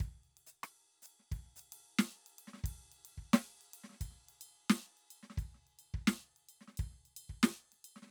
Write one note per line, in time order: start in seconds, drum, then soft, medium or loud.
0.00 kick medium
0.00 hi-hat pedal soft
0.00 ride soft
0.23 ride soft
0.37 ride soft
0.46 hi-hat pedal medium
0.63 cross-stick medium
0.63 ride medium
1.02 hi-hat pedal medium
1.02 ride soft
1.19 snare soft
1.31 kick soft
1.31 ride soft
1.44 snare soft
1.56 hi-hat pedal medium
1.56 ride soft
1.72 ride medium
1.99 snare loud
1.99 ride medium
2.09 hi-hat pedal soft
2.26 ride soft
2.38 ride medium
2.47 snare soft
2.53 snare soft
2.57 snare soft
2.64 kick soft
2.64 ride medium
2.92 ride soft
3.05 ride medium
3.17 kick soft
3.33 snare loud
3.33 ride medium
3.61 ride soft
3.73 ride medium
3.84 snare soft
3.89 snare soft
3.92 snare soft
4.01 kick soft
4.01 ride bell medium
4.11 snare soft
4.14 snare soft
4.29 ride soft
4.41 ride bell medium
4.70 snare loud
4.70 ride medium
4.97 ride soft
5.10 ride bell soft
5.23 snare soft
5.30 snare soft
5.34 kick soft
5.34 snare soft
5.39 ride bell soft
5.54 snare soft
5.67 ride soft
5.79 ride bell soft
5.94 kick soft
6.07 snare loud
6.07 ride bell soft
6.36 ride soft
6.49 ride bell soft
6.61 snare soft
6.67 snare soft
6.73 snare soft
6.77 kick medium
6.77 ride bell soft
6.91 snare soft
6.96 snare soft
7.05 ride bell soft
7.16 ride bell medium
7.29 kick soft
7.43 snare loud
7.43 ride bell medium
7.72 snare soft
7.72 ride soft
7.84 ride bell soft
7.96 snare soft
8.02 snare soft
8.06 snare soft